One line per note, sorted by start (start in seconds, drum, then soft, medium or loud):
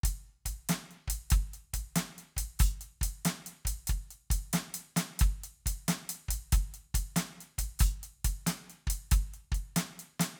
0.03 kick medium
0.03 closed hi-hat loud
0.46 kick medium
0.46 closed hi-hat loud
0.69 snare loud
0.69 closed hi-hat loud
0.91 closed hi-hat soft
1.08 kick medium
1.08 closed hi-hat loud
1.30 kick loud
1.30 closed hi-hat loud
1.54 closed hi-hat medium
1.74 kick medium
1.74 closed hi-hat loud
1.96 snare loud
1.96 closed hi-hat loud
2.18 closed hi-hat medium
2.37 kick medium
2.37 closed hi-hat loud
2.59 closed hi-hat loud
2.59 kick loud
2.81 closed hi-hat medium
3.01 kick medium
3.01 closed hi-hat loud
3.25 snare loud
3.25 closed hi-hat loud
3.46 closed hi-hat medium
3.65 kick medium
3.65 closed hi-hat loud
3.87 kick medium
3.87 closed hi-hat loud
4.11 closed hi-hat medium
4.30 kick medium
4.30 closed hi-hat loud
4.53 snare loud
4.53 closed hi-hat loud
4.74 closed hi-hat loud
4.96 snare loud
4.96 closed hi-hat loud
5.19 kick loud
5.19 closed hi-hat loud
5.44 closed hi-hat medium
5.66 kick medium
5.66 closed hi-hat loud
5.88 snare loud
5.88 closed hi-hat loud
6.09 closed hi-hat loud
6.28 kick medium
6.28 closed hi-hat loud
6.52 kick loud
6.52 closed hi-hat loud
6.74 closed hi-hat medium
6.94 kick medium
6.94 closed hi-hat loud
7.16 snare loud
7.16 closed hi-hat loud
7.41 closed hi-hat medium
7.58 kick medium
7.58 closed hi-hat loud
7.79 closed hi-hat loud
7.79 kick loud
8.03 closed hi-hat medium
8.24 kick medium
8.24 closed hi-hat loud
8.46 snare loud
8.46 closed hi-hat loud
8.70 closed hi-hat medium
8.87 kick medium
8.87 closed hi-hat loud
9.11 kick loud
9.11 closed hi-hat loud
9.34 closed hi-hat soft
9.52 kick medium
9.52 closed hi-hat medium
9.76 snare loud
9.76 closed hi-hat loud
9.99 closed hi-hat medium
10.20 snare loud
10.20 closed hi-hat loud